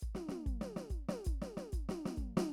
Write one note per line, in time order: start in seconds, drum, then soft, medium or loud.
0.00 kick soft
0.00 hi-hat pedal medium
0.15 snare soft
0.15 floor tom medium
0.29 snare soft
0.29 floor tom medium
0.46 kick soft
0.46 hi-hat pedal soft
0.61 snare soft
0.61 high tom medium
0.76 snare soft
0.76 high tom soft
0.90 kick soft
0.90 hi-hat pedal soft
1.09 snare soft
1.09 high tom medium
1.24 kick soft
1.24 hi-hat pedal medium
1.41 snare soft
1.41 high tom soft
1.57 snare soft
1.57 high tom soft
1.72 kick soft
1.72 hi-hat pedal medium
1.89 snare soft
1.89 floor tom medium
2.05 snare soft
2.05 floor tom soft
2.16 kick soft
2.16 hi-hat pedal soft
2.36 snare medium
2.36 floor tom medium